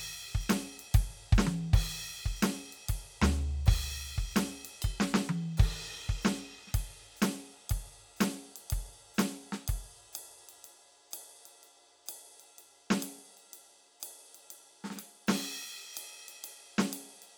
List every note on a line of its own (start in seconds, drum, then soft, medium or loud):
0.35 kick medium
0.40 hi-hat pedal soft
0.49 snare loud
0.49 ride loud
0.79 ride medium
0.94 kick loud
0.94 ride loud
1.32 kick loud
1.32 hi-hat pedal soft
1.38 snare loud
1.47 high tom loud
1.73 kick loud
1.73 crash loud
2.26 kick medium
2.36 hi-hat pedal soft
2.42 snare loud
2.42 ride loud
2.73 ride medium
2.89 kick medium
2.89 ride loud
3.22 snare loud
3.22 hi-hat pedal medium
3.22 floor tom loud
3.66 kick loud
3.66 crash loud
4.18 kick medium
4.31 hi-hat pedal soft
4.36 snare loud
4.36 ride loud
4.65 ride medium
4.82 kick medium
4.82 ride bell loud
5.00 snare loud
5.14 snare loud
5.29 high tom loud
5.57 kick loud
5.57 crash medium
5.57 ride loud
6.09 kick medium
6.22 snare loud
6.22 hi-hat pedal soft
6.67 snare soft
6.74 kick medium
6.74 snare soft
6.74 ride loud
7.16 hi-hat pedal soft
7.22 snare loud
7.22 ride loud
7.70 kick medium
7.70 ride loud
8.16 hi-hat pedal soft
8.21 snare loud
8.21 ride loud
8.56 ride medium
8.70 kick medium
8.70 ride loud
9.14 hi-hat pedal soft
9.18 snare loud
9.18 ride loud
9.52 snare medium
9.68 kick medium
9.68 ride loud
10.13 hi-hat pedal medium
10.13 ride loud
10.49 ride medium
10.64 ride medium
11.11 hi-hat pedal soft
11.11 ride loud
11.46 ride medium
11.63 ride soft
12.06 hi-hat pedal soft
12.06 ride loud
12.40 ride soft
12.58 ride medium
12.90 snare loud
12.98 hi-hat pedal medium
12.98 ride loud
13.37 ride soft
13.53 ride medium
14.00 hi-hat pedal soft
14.00 ride loud
14.35 ride medium
14.50 ride medium
14.84 snare medium
14.90 snare medium
14.90 hi-hat pedal soft
14.96 snare soft
14.96 ride medium
15.28 snare loud
15.28 crash loud
15.94 hi-hat pedal medium
15.94 ride loud
16.28 ride medium
16.44 ride loud
16.78 snare loud
16.78 hi-hat pedal medium
16.93 ride loud
17.22 ride medium